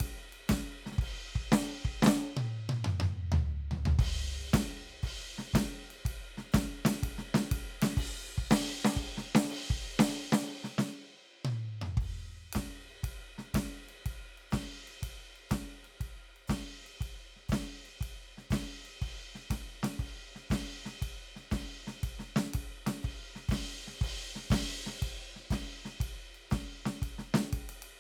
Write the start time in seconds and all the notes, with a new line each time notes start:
0.01 kick, ride
0.33 ride
0.48 kick, snare, hi-hat pedal, ride
0.87 snare
0.92 snare
0.99 kick, snare, ride
1.36 kick
1.53 snare, ride
1.85 kick
2.03 snare
2.07 snare
2.38 high tom
2.70 high tom
2.85 mid tom
3.01 mid tom
3.33 floor tom
3.72 floor tom
3.86 floor tom
3.99 kick, floor tom, ride
4.53 kick, snare, hi-hat pedal, ride
4.88 ride
5.04 kick, ride
5.39 snare
5.54 kick, snare, hi-hat pedal, ride
5.91 ride
6.06 kick, ride
6.38 snare
6.53 kick, snare, hi-hat pedal, ride
6.86 snare, ride
7.03 kick, ride
7.19 snare
7.35 snare
7.52 kick, hi-hat pedal, ride
7.83 snare, ride
7.98 kick, crash
8.38 kick
8.47 hi-hat pedal, ride
8.52 snare
8.85 snare
8.97 kick
9.02 ride
9.18 snare
9.36 snare
9.51 ride
9.71 kick
9.82 ride
10.00 snare, ride
10.33 snare
10.48 ride
10.64 snare
10.79 snare
11.45 high tom
11.82 mid tom
11.98 kick, crash
12.53 kick, snare, hi-hat pedal, ride
12.90 ride
13.04 kick, ride
13.39 snare
13.55 kick, snare, hi-hat pedal, ride
13.89 ride
14.06 kick, ride
14.38 ride
14.51 kick, snare, hi-hat pedal, ride
14.88 ride
15.03 kick, ride
15.36 ride
15.50 kick, snare, hi-hat pedal, ride
15.85 ride
16.01 kick, ride
16.37 ride
16.48 kick, snare, hi-hat pedal, ride
16.87 ride
17.01 kick, ride
17.37 snare
17.49 kick, snare, hi-hat pedal, ride
17.86 ride
18.01 kick, ride
18.38 snare
18.51 kick, snare, hi-hat pedal, ride
18.86 ride
19.02 kick, ride
19.35 snare
19.51 kick, snare, hi-hat pedal, ride
19.84 snare, ride
20.00 kick, ride
20.36 snare
20.50 kick, snare, hi-hat pedal, ride
20.86 snare
21.02 kick, ride
21.36 snare
21.51 kick, snare, hi-hat pedal, ride
21.88 snare
22.04 kick, ride
22.20 snare
22.37 snare
22.54 kick, hi-hat pedal, ride
22.87 snare, ride
23.04 kick, ride
23.36 snare
23.49 kick, snare, hi-hat pedal, ride
23.88 snare
23.93 snare
24.02 kick, ride
24.36 snare
24.51 kick, snare, hi-hat pedal, ride
24.87 snare
25.03 kick, ride
25.36 snare
25.51 kick, snare, hi-hat pedal, ride
25.86 snare
26.01 kick, ride
26.35 ride
26.51 kick, snare, hi-hat pedal, ride
26.86 snare
27.03 kick, ride
27.19 snare
27.35 snare
27.52 kick, hi-hat pedal, ride
27.70 ride
27.83 ride